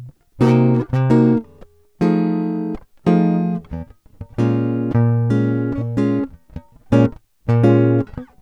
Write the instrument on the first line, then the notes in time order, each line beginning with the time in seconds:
acoustic guitar
0.42 C3 A#3 D#4 F#4
0.96 C3
1.12 A#3 D#4 F#4
2.03 F3 A3 D#4 G#4
3.08 F3 A3 D#4 G#4
4.40 A#2 G#3 C#4 F4
4.97 A#2
5.32 G#3 C#4 F4
5.74 A#2
5.99 G#3 C#4 F4
6.94 A#2 G#3 C#4 F4
7.50 A#2
7.65 G#3 C#4 F4